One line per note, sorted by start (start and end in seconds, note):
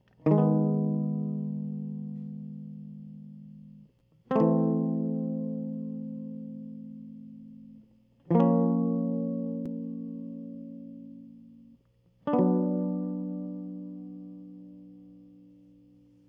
0.27 3.87 D#3
0.31 3.87 G#3
0.38 3.84 B3
4.30 7.81 C4
4.36 7.85 A3
4.41 7.82 E3
8.31 8.38 E3
8.31 11.79 A#3
8.37 11.83 F3
8.37 11.77 C#4
12.27 16.29 D4
12.34 16.03 B3
12.39 16.29 F#3